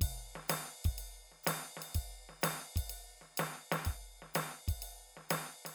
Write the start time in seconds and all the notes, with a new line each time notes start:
0.01 kick, ride
0.35 snare
0.48 snare, hi-hat pedal, ride
0.84 kick, ride
0.98 ride
1.32 snare
1.43 snare, hi-hat pedal, ride
1.77 snare
1.82 ride
1.95 kick, ride
2.29 snare
2.41 snare, hi-hat pedal, ride
2.76 kick, ride
2.87 hi-hat pedal, ride
3.21 snare
3.37 snare, hi-hat pedal, ride
3.72 snare, ride
3.85 kick, ride
4.22 snare
4.34 snare, hi-hat pedal, ride
4.68 kick, ride
4.82 ride
5.17 snare
5.29 snare, hi-hat pedal, ride
5.65 snare, ride